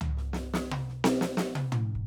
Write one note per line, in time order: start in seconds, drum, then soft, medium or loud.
0.02 floor tom loud
0.17 snare soft
0.33 snare medium
0.54 snare loud
0.72 high tom loud
0.88 snare soft
1.04 snare loud
1.21 snare loud
1.37 snare loud
1.55 high tom loud
1.72 mid tom loud
1.95 kick medium